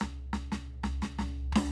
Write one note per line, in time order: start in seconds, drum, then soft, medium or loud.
0.00 snare medium
0.00 floor tom medium
0.00 hi-hat pedal medium
0.33 snare medium
0.33 floor tom medium
0.52 snare medium
0.52 floor tom medium
0.52 hi-hat pedal medium
0.83 snare medium
0.83 floor tom medium
1.02 snare medium
1.02 floor tom medium
1.02 hi-hat pedal medium
1.18 snare medium
1.18 floor tom medium
1.52 snare loud
1.52 floor tom loud